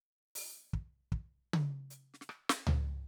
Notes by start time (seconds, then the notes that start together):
0.35 open hi-hat
0.69 hi-hat pedal
0.73 kick
1.12 kick
1.53 high tom
1.90 hi-hat pedal
2.14 snare
2.21 snare
2.29 cross-stick
2.49 snare
2.67 floor tom